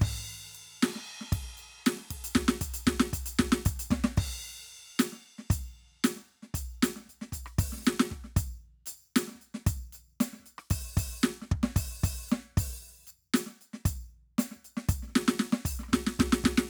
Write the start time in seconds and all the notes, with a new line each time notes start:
0.01 kick, crash, percussion
0.53 ride, percussion
0.83 snare, ride
0.96 snare
1.05 ride, percussion
1.22 snare
1.33 kick, ride
1.58 ride, percussion
1.87 snare, ride
1.97 snare
2.00 snare
2.01 snare
2.11 kick, ride
2.25 percussion
2.36 kick, snare
2.49 snare
2.62 kick, percussion
2.74 percussion
2.87 kick, snare
3.00 snare
3.14 kick, percussion
3.27 percussion
3.39 kick, snare
3.53 snare
3.66 kick, percussion
3.80 percussion
3.91 kick, snare
4.05 snare
4.15 kick, crash
4.18 kick
5.00 snare, percussion
5.13 snare
5.15 snare
5.39 snare
5.51 kick, percussion
5.79 percussion
6.05 snare, percussion
6.17 snare
6.19 snare
6.43 snare
6.55 kick, percussion
6.83 snare, percussion
6.97 snare
7.00 snare
7.06 kick, snare, percussion
7.22 snare
7.33 kick, percussion
7.47 cross-stick
7.59 kick, percussion
7.73 snare
7.78 snare
7.81 snare
7.85 snare, percussion
8.00 snare
8.11 kick, snare
8.25 snare
8.37 kick, percussion
8.87 percussion
9.17 snare, percussion
9.28 snare
9.32 snare
9.35 kick, snare
9.40 snare, percussion
9.55 snare
9.67 kick, percussion
9.93 percussion
9.95 percussion
10.21 snare, percussion
10.33 snare
10.37 snare
10.40 kick, snare
10.43 snare, percussion
10.59 cross-stick
10.71 kick, percussion
10.98 kick, percussion
11.24 snare, percussion
11.42 snare
11.52 kick
11.64 snare
11.77 kick, percussion
12.04 kick, percussion
12.29 kick, snare, percussion
12.58 kick, percussion
13.08 percussion
13.34 snare, percussion
13.47 snare
13.49 snare
13.62 percussion
13.74 snare
13.86 kick, percussion
14.39 snare, percussion
14.52 snare
14.57 kick
14.65 percussion
14.78 snare
14.89 kick, percussion
15.03 snare
15.08 snare
15.13 snare
15.16 snare
15.29 snare
15.40 snare
15.53 snare
15.66 kick, percussion
15.80 snare
15.84 cross-stick
15.87 cross-stick, snare, percussion
15.93 kick, snare
16.07 snare
16.20 kick, snare
16.33 snare
16.45 kick, snare
16.58 snare